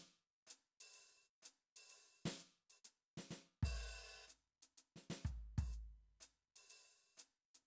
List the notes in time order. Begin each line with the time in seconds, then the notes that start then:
0.48 closed hi-hat, hi-hat pedal
0.81 open hi-hat
0.94 open hi-hat
1.43 closed hi-hat, hi-hat pedal
1.77 open hi-hat
1.90 open hi-hat
2.26 snare
2.38 closed hi-hat, hi-hat pedal
2.71 open hi-hat
2.85 open hi-hat
3.18 snare
3.30 snare, closed hi-hat, hi-hat pedal
3.64 open hi-hat, kick
4.16 snare
4.28 closed hi-hat, hi-hat pedal
4.63 closed hi-hat
4.78 open hi-hat
4.97 snare
5.11 snare
5.23 kick, closed hi-hat, hi-hat pedal
5.59 kick, open hi-hat
5.74 open hi-hat
6.21 closed hi-hat, hi-hat pedal
6.57 open hi-hat
6.71 open hi-hat
7.18 closed hi-hat, hi-hat pedal
7.55 closed hi-hat